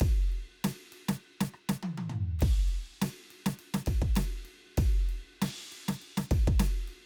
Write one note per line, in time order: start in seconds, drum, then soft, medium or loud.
0.00 kick loud
0.00 ride loud
0.32 ride soft
0.64 snare loud
0.64 ride loud
0.92 ride medium
1.09 snare loud
1.41 snare loud
1.54 cross-stick medium
1.69 snare loud
1.83 high tom loud
1.98 high tom loud
2.10 mid tom loud
2.39 kick loud
2.39 crash medium
2.39 ride medium
2.68 ride soft
3.02 snare loud
3.02 ride loud
3.31 ride medium
3.46 snare loud
3.59 ride medium
3.74 snare loud
3.86 kick loud
3.86 ride loud
4.02 kick loud
4.16 snare loud
4.16 ride loud
4.45 ride medium
4.78 kick loud
4.78 ride loud
5.09 ride medium
5.42 snare loud
5.42 ride loud
5.72 ride medium
5.88 snare loud
6.02 ride medium
6.17 snare loud
6.31 kick loud
6.31 ride loud
6.48 kick loud
6.60 snare loud
6.60 ride loud
6.88 ride medium